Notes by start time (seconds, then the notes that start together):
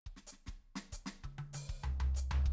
0.06 kick
0.16 snare
0.27 hi-hat pedal
0.32 snare
0.46 kick, snare
0.75 snare
0.92 kick, hi-hat pedal
1.06 snare
1.24 kick, high tom
1.38 high tom
1.53 hi-hat pedal, high tom
1.69 kick
1.83 floor tom
2.00 floor tom
2.14 kick, hi-hat pedal
2.31 floor tom
2.46 kick